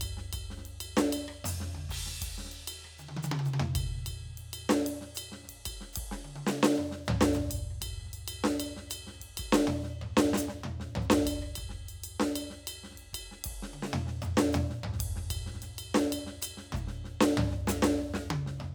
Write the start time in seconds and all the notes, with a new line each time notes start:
0.01 kick, ride bell
0.10 kick
0.17 snare
0.33 kick, ride bell
0.50 snare
0.58 snare
0.65 snare, ride
0.80 ride bell
0.97 snare
1.13 ride bell
1.28 cross-stick
1.44 hi-hat pedal, mid tom
1.60 snare
1.73 kick, snare, high tom
1.89 kick, crash
2.06 snare
2.22 kick, ride
2.28 kick
2.38 snare
2.45 snare
2.52 ride
2.68 ride bell
2.85 cross-stick
2.99 hi-hat pedal, high tom
3.09 high tom
3.17 high tom
3.23 hi-hat pedal, high tom
3.32 high tom
3.39 high tom
3.45 hi-hat pedal, high tom
3.54 high tom
3.60 mid tom
3.75 kick, ride bell
3.93 kick
3.98 snare
4.04 snare, ride bell
4.08 kick
4.38 ride
4.53 ride bell
4.69 snare
4.77 snare
4.86 ride
5.01 snare
5.15 hi-hat pedal, ride bell
5.32 snare
5.43 snare
5.48 kick, ride
5.66 kick, ride bell
5.71 kick
5.81 snare
5.93 hi-hat pedal, ride
5.97 kick
6.04 kick
6.11 snare
6.16 kick
6.25 high tom
6.36 closed hi-hat, high tom
6.47 snare
6.63 snare
6.74 hi-hat pedal, mid tom
6.91 snare
7.05 hi-hat pedal, floor tom
7.21 snare
7.33 hi-hat pedal, mid tom
7.44 cross-stick
7.50 kick, ride bell
7.54 hi-hat pedal
7.71 cross-stick
7.81 kick, ride bell
7.99 snare
8.05 snare
8.12 snare, ride bell
8.28 ride bell
8.44 snare
8.60 ride bell
8.77 snare
8.90 hi-hat pedal, ride bell
9.07 snare
9.14 cross-stick
9.20 kick, ride
9.37 kick, ride bell
9.53 snare
9.57 snare
9.67 mid tom
9.83 snare
10.02 floor tom
10.17 snare
10.33 snare, hi-hat pedal
10.49 snare
10.64 mid tom
10.80 snare
10.95 floor tom
11.02 hi-hat pedal
11.10 snare
11.25 kick, hi-hat pedal, ride bell
11.31 kick
11.42 cross-stick
11.56 kick, ride bell
11.69 snare
11.80 snare
11.89 ride bell
12.04 ride bell
12.20 snare
12.36 ride bell
12.50 snare
12.67 hi-hat pedal, ride bell
12.83 snare
12.91 snare
12.95 kick, ride
13.02 snare
13.13 kick, hi-hat pedal, ride bell
13.31 snare
13.44 kick, ride
13.52 kick
13.62 snare
13.73 high tom
13.83 snare
13.89 hi-hat pedal, mid tom
14.07 snare
14.22 hi-hat pedal, mid tom
14.37 snare
14.53 hi-hat pedal, mid tom
14.70 snare
14.83 floor tom
14.93 snare
14.99 kick, hi-hat pedal, ride
15.08 kick
15.11 kick
15.16 snare
15.20 snare
15.30 kick, ride bell
15.46 snare
15.54 snare
15.62 snare, ride bell
15.78 ride bell
15.95 snare
16.12 ride bell
16.27 snare
16.42 hi-hat pedal, ride bell
16.57 snare
16.72 kick, hi-hat pedal, mid tom
16.83 kick
16.85 kick, snare
17.04 snare
17.21 snare
17.37 floor tom
17.51 snare
17.67 kick, snare, hi-hat pedal
17.82 snare
17.99 mid tom
18.14 snare
18.30 high tom
18.46 snare
18.59 snare, mid tom